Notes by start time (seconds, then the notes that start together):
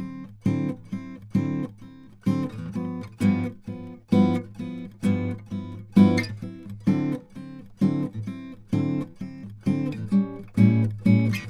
0.00 D3 F#3 C4 E4
0.47 D3 F#3 C4 E4
0.88 D3
0.94 F#3 C4 E4
1.36 D3 F#3 C4 E4
1.80 F#3 C4 E4
1.85 D3
2.27 D3 F#3 C4 E4
2.48 A2
2.52 D3
2.60 E2
2.75 G2 F3 B3 D#4
3.22 G2 F3 B3 E4
3.67 G2 F3 B3 E4
4.13 G2 F3 B3 E4
4.37 E2
4.57 G2 E4
4.61 F3 B3
5.04 G2 F3 B3 E4
5.53 G2 F3 B3 E4
5.76 B3
5.98 G2 F3 B3 E4
6.19 D3
6.44 F#3 C4 E4
6.88 D3 F#3 C4 E4
7.37 D3 F#3 C4 E4
7.83 D3 F#3 C4 E4
8.07 A2
8.26 D3 F#3 C4 E4
8.74 D3 G3 C4 E4
9.22 D3 F#3 C4 E4
9.67 D3 F#3 C4 E4
9.93 A2
9.99 E2
10.13 A2 G3 C#4
10.59 A2 G3 C#4 E4
11.07 A2 G3 C#4 E4
11.31 E2 D3